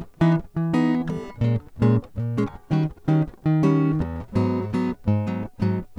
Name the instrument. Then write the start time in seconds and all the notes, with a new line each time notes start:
acoustic guitar
0.22 E3 B3 D#4 G#4
0.58 E3
0.75 B3 D#4 G#4
1.11 G3
1.43 A#2 G#3 C#4
1.83 A#2 G#3 C#4
2.18 A#2
2.39 G#3 C#4
2.73 D#3 G3 C#4 F#4
3.09 D#3 G3 C#4 F#4
3.47 D#3
3.64 G3 C#4 F#4
4.02 E2
4.37 G#2 F#3 B3 D#4
4.75 G#2 F#3 B3 D#4
5.09 G#2
5.28 F#3 B3 D#4
5.61 G#2 F#3 B3 D#4